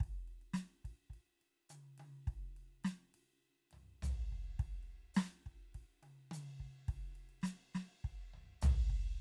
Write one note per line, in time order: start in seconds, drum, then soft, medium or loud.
0.00 kick soft
0.00 ride soft
0.28 ride soft
0.42 ride soft
0.54 snare medium
0.54 hi-hat pedal soft
0.54 ride soft
0.85 kick soft
0.85 ride soft
1.10 kick soft
1.10 ride soft
1.42 ride soft
1.69 hi-hat pedal soft
1.69 high tom soft
1.69 ride soft
1.98 high tom soft
1.98 ride soft
2.27 kick soft
2.27 ride soft
2.57 ride soft
2.84 snare medium
2.84 hi-hat pedal soft
2.84 ride soft
3.14 ride soft
3.71 floor tom soft
3.71 ride soft
4.03 floor tom medium
4.03 hi-hat pedal medium
4.03 ride soft
4.32 kick soft
4.59 kick soft
4.59 ride soft
4.83 ride soft
5.14 snare loud
5.14 hi-hat pedal soft
5.14 ride soft
5.43 kick soft
5.43 ride soft
5.75 kick soft
5.75 ride soft
6.03 high tom soft
6.03 ride soft
6.31 hi-hat pedal medium
6.31 high tom medium
6.31 ride soft
6.60 kick soft
6.88 kick soft
6.88 ride soft
7.16 ride soft
7.29 ride soft
7.42 snare medium
7.42 hi-hat pedal medium
7.42 ride soft
7.74 snare soft
7.74 ride soft
8.04 kick soft
8.04 ride soft
8.34 floor tom soft
8.62 floor tom loud
8.62 hi-hat pedal medium
8.62 ride medium
8.90 kick soft
8.90 ride soft